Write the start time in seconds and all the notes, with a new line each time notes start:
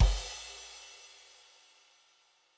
0.01 kick, crash